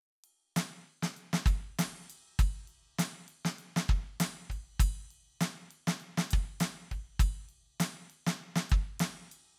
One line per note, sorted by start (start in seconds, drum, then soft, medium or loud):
0.24 ride soft
0.56 snare loud
0.56 ride bell medium
1.02 snare loud
1.17 ride bell soft
1.33 snare loud
1.46 kick loud
1.46 ride bell medium
1.79 snare loud
1.79 ride loud
2.10 ride bell soft
2.39 kick loud
2.39 ride bell medium
2.68 ride soft
2.99 snare loud
2.99 ride bell medium
3.28 ride soft
3.45 snare loud
3.58 ride soft
3.76 snare loud
3.89 kick loud
3.89 snare soft
3.89 ride soft
4.20 snare loud
4.20 ride bell loud
4.50 kick medium
4.50 ride bell soft
4.80 kick loud
4.80 ride bell loud
5.11 ride soft
5.41 snare loud
5.41 ride bell medium
5.71 ride soft
5.87 snare loud
6.00 ride soft
6.17 snare loud
6.31 kick loud
6.31 ride bell medium
6.60 snare loud
6.60 ride bell medium
6.91 kick medium
6.91 ride soft
7.20 kick loud
7.20 ride bell medium
7.49 ride soft
7.80 snare loud
7.80 ride bell medium
8.10 ride soft
8.27 snare loud
8.56 snare loud
8.70 kick loud
8.70 ride bell soft
9.00 snare loud
9.00 ride medium
9.31 ride bell soft